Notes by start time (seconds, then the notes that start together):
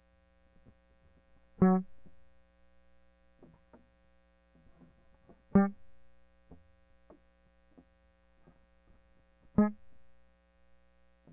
1.63 F#3
5.57 G3
9.60 G#3